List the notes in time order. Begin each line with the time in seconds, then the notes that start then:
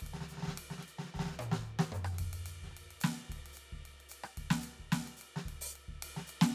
0.01 kick, ride
0.07 kick, ride
0.15 snare
0.22 snare
0.28 snare, hi-hat pedal
0.32 snare
0.38 snare
0.44 snare
0.48 kick, snare
0.55 snare, ride
0.71 snare
0.79 snare
0.84 ride
0.89 hi-hat pedal, ride
1.00 snare
1.05 snare
1.15 kick, snare
1.20 kick, snare
1.26 snare
1.32 snare
1.40 hi-hat pedal, mid tom
1.53 snare
1.60 kick
1.68 snare
1.80 snare
1.93 floor tom, hi-hat pedal
2.06 cross-stick
2.14 snare
2.20 kick, ride
2.27 kick
2.34 ride
2.47 hi-hat pedal, ride
2.64 kick, snare
2.72 cross-stick
2.78 ride
2.83 snare
2.92 ride
3.01 snare, hi-hat pedal, ride
3.28 kick, snare
3.33 snare, ride
3.38 kick, snare
3.47 ride
3.54 hi-hat pedal
3.58 ride
3.74 kick
3.86 ride
4.01 ride
4.10 hi-hat pedal, ride
4.25 cross-stick
4.38 kick, ride
4.46 kick
4.51 snare
4.62 hi-hat pedal, ride
4.81 kick
4.93 snare, ride
5.05 snare, ride
5.18 hi-hat pedal
5.22 ride
5.37 snare
5.46 kick, ride
5.62 open hi-hat
5.71 hi-hat pedal
5.77 ride
5.89 kick
6.04 ride
6.17 snare
6.28 hi-hat pedal, ride
6.42 snare